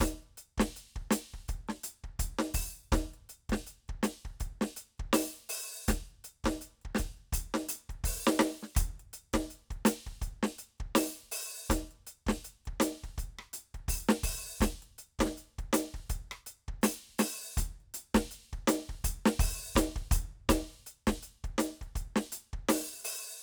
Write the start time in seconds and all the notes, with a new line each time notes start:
0.01 open hi-hat, kick, snare, hi-hat pedal
0.23 closed hi-hat
0.38 closed hi-hat
0.58 kick, snare, closed hi-hat
0.77 closed hi-hat
0.96 kick, closed hi-hat
1.11 closed hi-hat, snare
1.34 kick, closed hi-hat
1.49 closed hi-hat, kick
1.69 snare, closed hi-hat
1.84 closed hi-hat
2.04 kick, closed hi-hat
2.20 closed hi-hat, kick
2.39 snare
2.55 open hi-hat, kick
2.93 open hi-hat, kick, snare, hi-hat pedal
3.14 closed hi-hat
3.30 closed hi-hat
3.50 kick, snare, closed hi-hat
3.67 closed hi-hat
3.89 kick, closed hi-hat
4.04 closed hi-hat, snare
4.26 kick, closed hi-hat
4.41 closed hi-hat, kick
4.62 snare, closed hi-hat
4.77 closed hi-hat
4.99 kick, closed hi-hat
5.14 open hi-hat, snare
5.50 open hi-hat
5.87 closed hi-hat, kick, snare, hi-hat pedal
6.10 closed hi-hat
6.25 closed hi-hat
6.45 kick, snare, closed hi-hat
6.62 closed hi-hat
6.82 kick, closed hi-hat
6.96 closed hi-hat, snare
7.00 kick
7.18 closed hi-hat
7.33 closed hi-hat, kick
7.55 snare
7.70 closed hi-hat
7.90 kick, closed hi-hat
8.05 open hi-hat, kick
8.28 snare
8.40 kick, snare
8.63 snare
8.75 closed hi-hat, kick, cross-stick, hi-hat pedal
9.00 closed hi-hat
9.14 closed hi-hat
9.34 kick, snare, closed hi-hat
9.51 closed hi-hat
9.71 kick, closed hi-hat
9.86 closed hi-hat, snare
10.07 kick, closed hi-hat
10.22 closed hi-hat, kick
10.44 snare, closed hi-hat
10.59 closed hi-hat
10.79 kick, closed hi-hat
10.96 open hi-hat, snare
11.24 kick
11.32 open hi-hat
11.70 closed hi-hat, kick, snare, hi-hat pedal
11.92 closed hi-hat
12.07 closed hi-hat
12.27 kick, snare, closed hi-hat
12.45 closed hi-hat
12.66 kick, closed hi-hat
12.81 closed hi-hat, snare
13.04 kick, closed hi-hat
13.18 closed hi-hat, kick
13.39 cross-stick
13.54 closed hi-hat
13.75 kick, closed hi-hat
13.89 open hi-hat, kick
14.09 snare
14.24 open hi-hat, kick
14.61 open hi-hat, kick, snare, hi-hat pedal
14.83 closed hi-hat
14.99 closed hi-hat
15.20 kick, snare, closed hi-hat
15.26 snare
15.38 closed hi-hat
15.59 kick, closed hi-hat
15.74 closed hi-hat, snare
15.95 kick, closed hi-hat
16.10 closed hi-hat, kick
16.32 cross-stick, closed hi-hat
16.47 closed hi-hat
16.69 kick
16.82 open hi-hat, snare, hi-hat pedal
17.10 kick
17.19 open hi-hat, snare
17.39 open hi-hat
17.57 closed hi-hat, kick, snare, hi-hat pedal
17.81 closed hi-hat
17.95 closed hi-hat
18.15 kick, snare, closed hi-hat
18.32 closed hi-hat
18.54 kick, closed hi-hat
18.68 closed hi-hat, snare
18.90 kick, closed hi-hat
19.05 closed hi-hat, kick
19.26 snare
19.40 open hi-hat, kick
19.76 closed hi-hat, kick, snare, hi-hat pedal
19.96 kick, closed hi-hat
20.05 kick
20.12 closed hi-hat, kick
20.50 open hi-hat, kick, snare, hi-hat pedal
20.74 closed hi-hat
20.87 closed hi-hat
21.08 kick, snare, closed hi-hat
21.23 closed hi-hat
21.45 kick, closed hi-hat
21.59 closed hi-hat, snare
21.82 kick, closed hi-hat
21.96 closed hi-hat, kick
22.17 snare, closed hi-hat
22.33 closed hi-hat
22.54 kick
22.69 open hi-hat, snare
23.05 open hi-hat